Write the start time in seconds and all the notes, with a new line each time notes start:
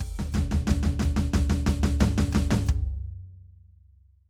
0.01 kick
0.19 snare, floor tom
0.33 kick, snare, hi-hat pedal
0.37 floor tom
0.52 snare, floor tom
0.68 kick, snare, floor tom, hi-hat pedal
0.83 snare, floor tom
1.00 kick, snare, floor tom, hi-hat pedal
1.17 snare, floor tom
1.34 kick, snare, floor tom, hi-hat pedal
1.50 snare, floor tom
1.67 kick, snare, floor tom, hi-hat pedal
1.84 snare, floor tom
2.00 kick, snare, hi-hat pedal, floor tom
2.18 snare, floor tom
2.31 kick, snare, floor tom, hi-hat pedal
2.51 snare, floor tom
2.66 kick, hi-hat pedal